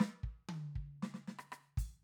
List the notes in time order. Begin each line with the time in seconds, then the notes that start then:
0.01 snare
0.24 kick
0.49 high tom
0.76 kick
1.03 snare
1.14 snare
1.28 snare
1.39 cross-stick
1.52 cross-stick
1.78 open hi-hat, kick